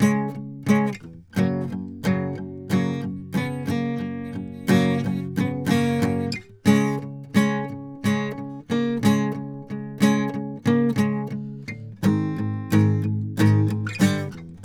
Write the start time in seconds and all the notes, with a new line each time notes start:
0.01 C#3 G#3 C#4
0.30 G#3
0.36 C#3
0.67 C#3 G#3 C#4
1.05 E2
1.37 F#2 C#3 F#3 A#3
1.73 F#2
2.05 F#2 C#3 F#3
2.34 F#2
2.71 F#2 C#3 F#3
2.75 A#3
3.02 F#2
3.34 F#2 C#3 B3
3.39 C#4
3.70 C#3 A#3 C#4
3.98 F#2 C#3
4.34 F#2 C#3
4.69 F#2 C#3 F#3 A#3
4.73 C#4
4.96 C#3
5.05 F#2
5.38 F#2 C#3 B3
5.42 C#4
5.67 F#2 C#3
5.72 A#3 C#4
6.03 F#2 C#3 F#3
6.66 C#3 G#3 C#4
6.99 C#3 G#3
7.36 C#3 G#3 C#4
7.70 C#3
8.05 C#3 G#3 C#4
8.33 G#3
8.39 C#3
8.71 C#3 A#3
9.04 C#3 G#3 C#4
9.33 C#3 G#3
9.71 C#3 G#3
10.02 C#3 G#3 C#4
10.35 C#3 G#3
10.66 C#3 A#3
10.97 C#3 G#3 C#4
11.32 C#3 G#3
11.69 D3
12.04 G#2 D#3 G#3
12.08 C4
12.38 G#2 D#3
12.73 G#2 D#3 G#3 C4
13.04 G#2 D#3
13.38 G#2 D#3 G#3 C4
13.68 G#2 D#3
13.90 B3
14.00 G2 D3 G3
14.33 E2